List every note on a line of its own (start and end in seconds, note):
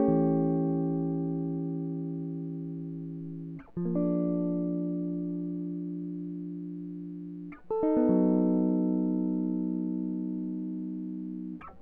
0.00 1.87 A3
0.09 3.63 E3
3.78 7.57 F3
3.86 5.51 A#3
3.96 7.58 D4
7.71 10.44 A4
7.83 11.60 D#4
7.97 11.65 B3
8.10 11.60 F#3